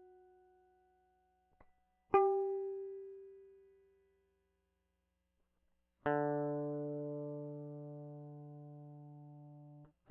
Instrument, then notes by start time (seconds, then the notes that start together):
electric guitar
2.14 G4
2.24 G4
6.07 D3